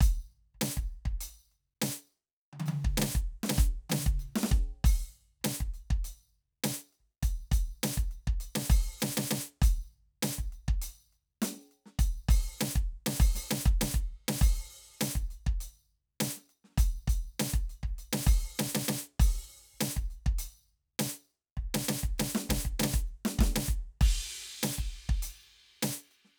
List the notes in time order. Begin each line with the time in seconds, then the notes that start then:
0.01 closed hi-hat, kick
0.55 kick
0.61 closed hi-hat, snare
0.77 kick
1.06 kick, crash
1.21 closed hi-hat
1.52 closed hi-hat
1.82 closed hi-hat, snare
2.53 high tom
2.60 high tom
2.66 hi-hat pedal, high tom
2.85 kick
2.98 snare, hi-hat pedal
3.02 snare
3.15 kick
3.44 snare
3.50 snare
3.58 kick
3.90 snare, hi-hat pedal, high tom
4.07 kick
4.20 hi-hat pedal
4.36 snare
4.44 snare
4.52 kick
4.85 kick, percussion
5.42 kick, snare, hi-hat pedal, percussion
5.61 kick
5.74 closed hi-hat
5.91 kick, crash
6.05 closed hi-hat
6.64 closed hi-hat, snare
6.93 closed hi-hat
7.00 kick
7.23 closed hi-hat, kick
7.52 closed hi-hat, kick
7.83 closed hi-hat, snare
7.98 kick
8.11 closed hi-hat
8.28 kick
8.40 closed hi-hat
8.56 snare
8.70 kick, percussion
9.01 snare, hi-hat pedal
9.17 snare
9.31 snare
9.62 closed hi-hat, kick
9.85 hi-hat pedal
10.23 closed hi-hat, snare
10.39 kick
10.53 closed hi-hat
10.68 kick, crash
10.82 closed hi-hat
11.13 closed hi-hat
11.42 closed hi-hat, snare
11.71 closed hi-hat
11.86 snare
11.99 closed hi-hat, kick
12.29 kick, percussion
12.60 snare, hi-hat pedal
12.76 kick
13.06 snare
13.20 kick, percussion
13.35 snare, percussion
13.50 snare, hi-hat pedal
13.66 kick
13.81 snare, hi-hat pedal, percussion
13.94 kick
14.29 snare
14.42 kick, percussion
14.90 kick
15.01 closed hi-hat, snare, hi-hat pedal
15.16 kick
15.31 closed hi-hat
15.47 kick
15.61 closed hi-hat
16.21 closed hi-hat, snare
16.37 snare
16.50 closed hi-hat
16.64 snare
16.69 snare
16.71 snare
16.78 closed hi-hat, kick
17.08 closed hi-hat, kick
17.40 closed hi-hat, snare
17.54 kick
17.70 closed hi-hat
17.83 kick, crash
17.88 ride
17.99 closed hi-hat
18.13 snare
18.27 kick, percussion
18.59 snare, hi-hat pedal
18.75 snare
18.89 snare
19.20 kick, percussion
19.74 kick
19.80 closed hi-hat, snare, hi-hat pedal
19.97 kick
20.11 closed hi-hat
20.26 kick
20.39 closed hi-hat
21.00 closed hi-hat, snare
21.57 kick
21.62 ride
21.75 snare
21.88 snare, hi-hat pedal
22.04 kick
22.19 snare, hi-hat pedal
22.35 snare
22.50 kick, snare
22.65 kick
22.80 snare, hi-hat pedal
22.84 snare
22.94 kick
23.06 hi-hat pedal
23.25 snare
23.39 kick, snare
23.56 snare
23.68 kick, snare
23.98 kick
24.01 kick, crash
24.62 closed hi-hat, kick, snare
24.79 kick
24.93 closed hi-hat
25.09 kick
25.23 closed hi-hat
25.83 closed hi-hat, snare
26.11 closed hi-hat
26.25 snare